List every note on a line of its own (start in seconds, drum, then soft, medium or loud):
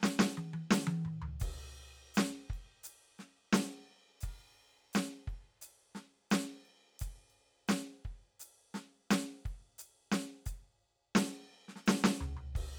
0.01 snare soft
0.03 snare loud
0.03 hi-hat pedal medium
0.20 snare loud
0.38 high tom medium
0.54 high tom medium
0.71 snare loud
0.71 hi-hat pedal medium
0.87 high tom loud
1.05 mid tom medium
1.22 floor tom medium
1.40 kick medium
1.40 hi-hat pedal medium
1.40 crash medium
2.15 snare loud
2.15 hi-hat pedal medium
2.15 ride soft
2.50 kick soft
2.50 ride soft
2.84 hi-hat pedal medium
2.84 ride medium
3.19 snare soft
3.19 ride soft
3.53 snare loud
3.53 hi-hat pedal medium
3.53 ride soft
4.21 kick soft
4.21 hi-hat pedal medium
4.21 ride soft
4.21 crash soft
4.93 snare loud
4.93 hi-hat pedal medium
4.93 ride soft
5.28 kick soft
5.28 ride soft
5.62 hi-hat pedal medium
5.62 ride medium
5.95 snare soft
5.95 ride soft
6.31 snare loud
6.31 hi-hat pedal medium
6.31 ride soft
6.66 ride soft
7.00 kick soft
7.00 hi-hat pedal medium
7.00 ride medium
7.31 ride soft
7.68 snare loud
7.68 hi-hat pedal medium
7.68 ride soft
8.05 kick soft
8.05 ride soft
8.40 hi-hat pedal medium
8.40 ride medium
8.75 snare medium
8.75 ride soft
9.11 snare loud
9.11 hi-hat pedal medium
9.11 ride medium
9.46 kick soft
9.46 ride soft
9.79 hi-hat pedal medium
9.79 ride soft
10.12 snare loud
10.12 ride soft
10.46 kick soft
10.46 hi-hat pedal medium
10.46 ride soft
10.81 ride soft
11.16 snare loud
11.16 hi-hat pedal medium
11.16 ride soft
11.69 snare soft
11.76 snare soft
11.84 snare soft
11.84 hi-hat pedal medium
11.88 snare loud
12.04 snare loud
12.21 floor tom medium
12.37 floor tom soft
12.56 kick medium
12.56 crash medium